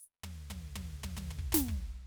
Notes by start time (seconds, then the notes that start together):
0.00 hi-hat pedal
0.23 floor tom, high tom
0.50 floor tom, high tom
0.76 floor tom, high tom
1.03 floor tom, high tom
1.17 floor tom, high tom
1.30 floor tom
1.39 kick
1.52 snare, floor tom
1.68 kick